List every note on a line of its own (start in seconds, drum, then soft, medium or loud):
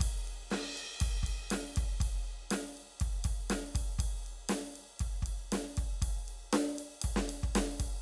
0.01 kick medium
0.01 ride loud
0.28 ride soft
0.51 snare medium
0.51 ride loud
0.78 ride medium
1.01 kick medium
1.01 ride loud
1.24 kick medium
1.24 ride medium
1.51 snare medium
1.51 ride loud
1.77 kick medium
1.77 ride medium
2.01 kick medium
2.01 ride loud
2.51 snare medium
2.51 ride loud
2.78 ride soft
3.01 kick medium
3.01 ride medium
3.25 kick medium
3.25 ride loud
3.51 snare medium
3.51 ride loud
3.76 kick medium
3.76 ride loud
3.99 kick medium
3.99 ride loud
4.27 ride soft
4.50 snare loud
4.50 ride loud
4.76 ride medium
5.00 kick medium
5.00 ride medium
5.23 kick medium
5.23 ride medium
5.53 snare loud
5.53 ride loud
5.78 kick medium
5.78 ride medium
6.02 kick medium
6.02 ride loud
6.29 ride medium
6.54 snare medium
6.54 ride loud
6.79 ride medium
7.02 kick medium
7.02 ride loud
7.17 snare loud
7.30 ride medium
7.44 kick medium
7.56 snare loud
7.56 ride loud
7.80 kick medium
7.80 ride loud